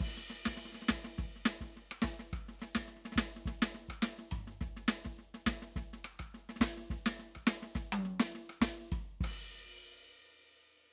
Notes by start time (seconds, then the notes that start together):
0.01 kick, crash
0.09 kick
0.14 kick, snare
0.28 snare, hi-hat pedal
0.46 kick, snare
0.58 snare
0.66 snare
0.73 snare
0.75 snare
0.83 snare
0.88 kick, snare, hi-hat pedal
0.97 kick
1.05 snare
1.19 kick, snare
1.26 kick
1.30 kick
1.37 snare
1.46 snare, hi-hat pedal
1.62 kick, snare
1.78 snare
1.92 cross-stick
2.03 kick, snare, hi-hat pedal
2.20 snare
2.34 kick, cross-stick
2.40 kick
2.49 snare
2.59 snare, hi-hat pedal
2.76 kick, snare
2.88 snare
2.97 snare
3.03 snare
3.06 snare
3.13 kick, snare, hi-hat pedal
3.19 snare
3.23 kick
3.37 snare
3.47 kick, snare
3.53 kick
3.63 snare
3.72 snare, hi-hat pedal
3.90 kick, cross-stick
4.03 snare
4.19 snare
4.32 kick, hi-hat pedal, floor tom
4.40 kick
4.42 kick
4.48 snare
4.62 kick, snare
4.68 kick
4.77 snare
4.89 snare, hi-hat pedal
5.05 kick, snare
5.19 snare
5.35 snare
5.47 kick, snare, hi-hat pedal
5.63 snare
5.77 kick, snare
5.83 kick
5.94 snare
6.04 cross-stick, hi-hat pedal
6.20 kick, cross-stick
6.35 snare
6.50 snare
6.57 snare
6.61 kick, snare, hi-hat pedal
6.70 kick
6.78 snare
6.91 kick, snare
6.98 kick
7.07 snare
7.18 snare, hi-hat pedal
7.36 kick, cross-stick
7.48 snare
7.63 snare
7.76 kick, snare, hi-hat pedal
7.85 kick
7.93 high tom
8.06 snare
8.21 snare
8.36 snare
8.50 cross-stick
8.62 kick, snare
8.68 kick
8.92 kick, hi-hat pedal, floor tom
9.00 kick
9.14 kick
9.22 kick, cross-stick, hi-hat pedal, crash
9.35 kick